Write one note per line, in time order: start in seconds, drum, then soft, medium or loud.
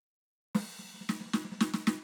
0.55 snare loud
0.55 crash medium
0.79 snare soft
0.85 snare soft
0.89 snare soft
0.94 snare soft
1.01 snare soft
1.09 snare loud
1.21 snare soft
1.27 snare soft
1.34 snare loud
1.45 snare soft
1.52 snare soft
1.58 snare soft
1.61 snare loud
1.74 snare loud
1.87 snare loud